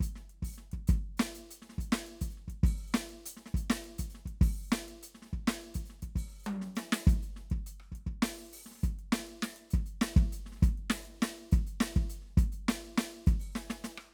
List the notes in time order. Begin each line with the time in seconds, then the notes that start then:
0.01 closed hi-hat, kick
0.16 snare
0.30 closed hi-hat
0.43 open hi-hat, kick
0.53 hi-hat pedal
0.58 snare
0.72 kick, closed hi-hat
0.88 closed hi-hat, kick
1.18 snare, hi-hat pedal
1.35 closed hi-hat, snare
1.51 closed hi-hat
1.62 snare
1.70 snare
1.73 snare
1.79 closed hi-hat, kick
1.93 snare
2.07 closed hi-hat
2.19 open hi-hat, kick, snare
2.31 hi-hat pedal
2.37 snare
2.48 kick, closed hi-hat
2.64 open hi-hat, kick
2.94 snare, hi-hat pedal
3.10 closed hi-hat
3.26 closed hi-hat
3.37 snare
3.46 snare
3.55 closed hi-hat, kick
3.70 snare
3.85 closed hi-hat
3.99 open hi-hat, kick
4.10 hi-hat pedal
4.15 snare
4.26 kick, closed hi-hat
4.42 open hi-hat, kick
4.72 snare, hi-hat pedal
4.89 closed hi-hat
5.03 closed hi-hat
5.15 snare
5.23 snare
5.26 snare
5.33 kick, closed hi-hat
5.48 snare
5.62 closed hi-hat
5.75 open hi-hat, kick
5.86 hi-hat pedal
5.90 snare
6.00 kick, snare, closed hi-hat
6.16 open hi-hat, kick
6.28 snare
6.32 snare
6.44 hi-hat pedal, high tom
6.62 snare
6.76 snare, hi-hat pedal
6.93 snare
7.07 closed hi-hat, kick
7.23 closed hi-hat
7.37 snare
7.51 kick, closed hi-hat
7.67 closed hi-hat
7.80 cross-stick
7.92 kick, closed hi-hat
8.07 kick
8.23 open hi-hat, snare
8.53 open hi-hat
8.66 snare
8.72 snare
8.75 snare
8.79 snare, hi-hat pedal
8.83 closed hi-hat, kick, snare
8.99 closed hi-hat
9.13 snare
9.20 snare
9.27 closed hi-hat
9.43 snare
9.51 snare
9.56 snare, closed hi-hat
9.71 closed hi-hat, kick
9.86 closed hi-hat
10.02 snare
10.15 kick, snare, closed hi-hat
10.33 closed hi-hat
10.46 snare
10.52 snare
10.56 snare
10.61 closed hi-hat, kick, snare
10.78 closed hi-hat
10.90 snare
11.06 closed hi-hat
11.23 snare
11.31 snare
11.37 closed hi-hat
11.52 closed hi-hat, kick
11.67 closed hi-hat
11.81 snare
11.96 kick, closed hi-hat
12.10 closed hi-hat
12.22 snare
12.25 snare
12.38 closed hi-hat, kick
12.53 closed hi-hat
12.69 snare
12.84 closed hi-hat
12.98 snare
13.12 closed hi-hat
13.27 closed hi-hat, kick
13.40 open hi-hat
13.56 snare, hi-hat pedal
13.70 snare
13.84 snare, hi-hat pedal
13.98 cross-stick